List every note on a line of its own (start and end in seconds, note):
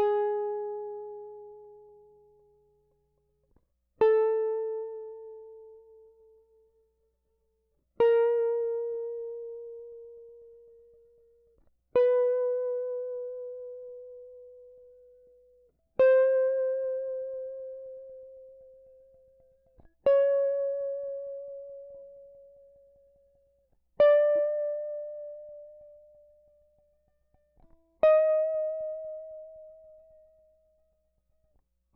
0.00 2.43 G#4
4.02 6.48 A4
8.01 11.25 A#4
11.96 15.65 B4
15.99 19.56 C5
20.06 23.30 C#5
23.99 26.71 D5
28.02 30.58 D#5